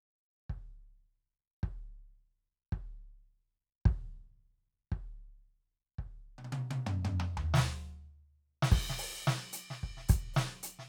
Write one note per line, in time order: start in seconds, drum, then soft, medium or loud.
0.50 kick medium
1.63 kick medium
2.72 kick medium
3.85 kick loud
4.92 kick medium
5.99 kick medium
6.38 high tom medium
6.44 high tom medium
6.52 high tom loud
6.71 high tom loud
6.87 mid tom loud
7.05 mid tom loud
7.20 mid tom loud
7.37 floor tom loud
7.54 kick soft
7.54 snare loud
7.57 snare loud
8.62 snare loud
8.72 kick loud
8.72 crash loud
8.90 snare medium
8.98 open hi-hat loud
9.24 snare loud
9.24 hi-hat pedal medium
9.53 closed hi-hat loud
9.70 snare medium
9.83 kick medium
9.97 snare soft
10.09 closed hi-hat loud
10.09 kick loud
10.34 snare loud
10.34 hi-hat pedal medium
10.63 closed hi-hat loud
10.79 snare medium